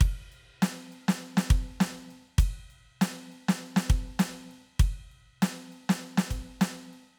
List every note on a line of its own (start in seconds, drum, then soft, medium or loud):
0.01 kick loud
0.01 ride medium
0.32 ride bell soft
0.62 snare loud
0.62 ride bell medium
0.92 ride bell soft
1.08 snare loud
1.37 snare loud
1.51 kick loud
1.51 ride bell medium
1.81 snare loud
1.81 ride bell medium
2.11 ride bell soft
2.39 kick loud
2.39 ride bell loud
2.70 ride bell soft
3.02 snare loud
3.02 ride bell loud
3.32 ride bell soft
3.49 snare loud
3.77 snare loud
3.90 kick loud
3.90 ride bell medium
4.20 snare loud
4.20 ride bell medium
4.51 ride soft
4.80 kick loud
4.80 ride bell medium
5.12 ride soft
5.42 snare loud
5.42 ride bell medium
5.72 ride bell soft
5.90 snare loud
6.18 snare loud
6.31 kick medium
6.31 ride bell medium
6.61 snare loud
6.61 ride bell medium
6.93 ride soft